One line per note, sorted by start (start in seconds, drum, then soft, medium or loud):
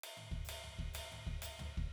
0.04 ride medium
0.17 high tom soft
0.31 kick soft
0.45 ride medium
0.45 percussion soft
0.64 floor tom soft
0.79 kick soft
0.94 ride medium
0.94 percussion soft
1.12 high tom soft
1.27 kick soft
1.42 ride medium
1.42 percussion medium
1.59 floor tom medium
1.77 kick soft